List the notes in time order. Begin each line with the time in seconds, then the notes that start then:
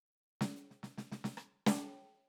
0.41 snare
0.56 hi-hat pedal
0.70 snare
0.83 snare
0.97 snare
1.12 snare
1.24 snare
1.37 cross-stick
1.66 snare